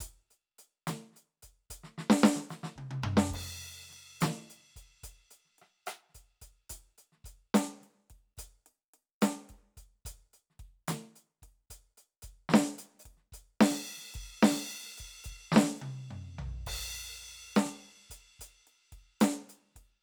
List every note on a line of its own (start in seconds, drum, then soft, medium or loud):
0.01 closed hi-hat medium
0.01 kick soft
0.07 kick soft
0.31 closed hi-hat soft
0.59 closed hi-hat soft
0.88 closed hi-hat medium
0.88 snare medium
1.13 closed hi-hat soft
1.13 snare soft
1.43 closed hi-hat medium
1.43 kick soft
1.71 closed hi-hat medium
1.71 kick soft
1.84 snare soft
1.99 snare medium
2.11 snare loud
2.24 snare loud
2.24 hi-hat pedal medium
2.36 snare soft
2.50 snare medium
2.50 hi-hat pedal soft
2.64 snare medium
2.77 kick soft
2.77 high tom medium
2.91 high tom loud
3.03 kick soft
3.03 mid tom loud
3.18 snare loud
3.31 kick soft
3.31 crash loud
3.37 kick soft
3.65 open hi-hat soft
3.90 snare soft
3.90 closed hi-hat soft
4.22 closed hi-hat loud
4.22 snare loud
4.51 closed hi-hat soft
4.77 closed hi-hat soft
4.77 kick soft
5.04 closed hi-hat medium
5.04 kick soft
5.31 closed hi-hat soft
5.46 snare soft
5.59 cross-stick soft
5.59 closed hi-hat soft
5.87 open hi-hat medium
5.87 cross-stick medium
5.87 hi-hat pedal soft
6.10 snare soft
6.15 closed hi-hat soft
6.15 kick soft
6.42 closed hi-hat medium
6.42 kick soft
6.70 closed hi-hat medium
6.70 kick soft
6.99 closed hi-hat soft
7.13 snare soft
7.18 snare soft
7.21 kick soft
7.21 snare soft
7.26 closed hi-hat medium
7.55 closed hi-hat loud
7.55 snare loud
7.82 snare soft
7.82 closed hi-hat soft
8.11 kick soft
8.11 closed hi-hat soft
8.38 closed hi-hat medium
8.38 kick soft
8.38 hi-hat pedal soft
8.67 closed hi-hat soft
8.94 closed hi-hat soft
9.22 closed hi-hat loud
9.22 snare loud
9.22 hi-hat pedal soft
9.50 kick soft
9.50 closed hi-hat soft
9.78 closed hi-hat soft
9.78 kick soft
10.06 closed hi-hat medium
10.06 kick soft
10.11 kick soft
10.34 closed hi-hat soft
10.51 snare soft
10.57 kick soft
10.57 snare soft
10.57 closed hi-hat soft
10.89 closed hi-hat loud
10.89 snare medium
11.16 closed hi-hat soft
11.43 kick soft
11.43 closed hi-hat soft
11.71 closed hi-hat medium
11.71 kick soft
11.98 closed hi-hat soft
12.23 closed hi-hat medium
12.23 kick soft
12.50 snare medium
12.55 snare loud
12.61 snare soft
12.79 open hi-hat medium
13.00 hi-hat pedal medium
13.06 kick soft
13.06 closed hi-hat soft
13.18 snare soft
13.33 closed hi-hat medium
13.33 kick soft
13.61 snare loud
13.61 crash loud
13.71 snare soft
13.87 closed hi-hat soft
13.98 snare soft
14.15 kick soft
14.15 snare soft
14.15 closed hi-hat medium
14.22 kick soft
14.43 snare loud
14.43 crash loud
14.52 snare soft
14.70 closed hi-hat soft
14.81 snare soft
14.98 closed hi-hat medium
14.98 kick soft
15.25 closed hi-hat medium
15.25 kick soft
15.25 snare soft
15.33 kick soft
15.53 snare loud
15.57 snare loud
15.63 snare medium
15.78 hi-hat pedal soft
15.82 high tom loud
16.11 mid tom medium
16.39 floor tom medium
16.67 kick soft
16.67 crash loud
16.74 kick soft
17.55 closed hi-hat medium
17.55 snare loud
17.55 hi-hat pedal soft
17.66 snare soft
18.11 closed hi-hat medium
18.11 kick soft
18.40 closed hi-hat medium
18.40 kick soft
18.68 closed hi-hat soft
18.93 kick soft
18.93 closed hi-hat soft
19.21 closed hi-hat loud
19.21 snare loud
19.50 closed hi-hat medium
19.72 snare soft
19.76 kick soft
19.76 closed hi-hat soft